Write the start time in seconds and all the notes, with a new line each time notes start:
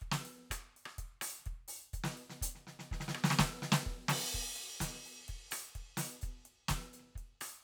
0.01 kick, closed hi-hat
0.11 snare
0.25 open hi-hat
0.50 closed hi-hat, kick, cross-stick
0.76 open hi-hat
0.85 cross-stick
0.98 kick, closed hi-hat
1.21 open hi-hat, cross-stick
1.39 snare
1.46 kick, closed hi-hat
1.60 snare
1.68 open hi-hat
1.93 closed hi-hat, kick
2.04 snare
2.17 open hi-hat
2.29 snare
2.41 closed hi-hat, kick
2.55 snare
2.67 snare
2.79 snare
2.91 kick, snare
3.00 snare
3.08 snare
3.15 cross-stick
3.24 snare
3.30 snare
3.36 kick, snare, hi-hat pedal
3.62 snare
3.72 snare
3.86 kick
4.08 snare, crash
4.30 cross-stick
4.34 kick
4.56 open hi-hat
4.80 closed hi-hat, kick, snare
4.94 snare
5.05 open hi-hat
5.13 snare
5.18 snare
5.22 snare
5.28 kick, closed hi-hat
5.51 open hi-hat, cross-stick
5.75 kick, closed hi-hat
5.97 open hi-hat, snare
6.21 closed hi-hat, kick
6.30 snare
6.35 snare
6.45 open hi-hat
6.68 closed hi-hat, kick, snare
6.80 snare
6.93 open hi-hat
6.99 snare
7.04 snare
7.08 snare
7.10 snare
7.15 kick, closed hi-hat
7.41 open hi-hat, cross-stick